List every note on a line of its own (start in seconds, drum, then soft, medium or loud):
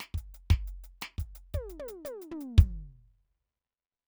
0.01 snare medium
0.01 closed hi-hat medium
0.15 kick medium
0.15 closed hi-hat medium
0.35 closed hi-hat medium
0.51 kick loud
0.51 snare medium
0.51 closed hi-hat medium
0.68 closed hi-hat soft
0.84 closed hi-hat medium
1.02 snare medium
1.02 closed hi-hat medium
1.19 kick medium
1.19 closed hi-hat medium
1.36 closed hi-hat medium
1.55 kick medium
1.55 closed hi-hat medium
1.55 high tom medium
1.70 closed hi-hat medium
1.80 high tom medium
1.89 closed hi-hat medium
2.05 closed hi-hat medium
2.05 high tom medium
2.22 closed hi-hat medium
2.31 floor tom medium
2.41 closed hi-hat medium
2.59 closed hi-hat medium
2.59 kick loud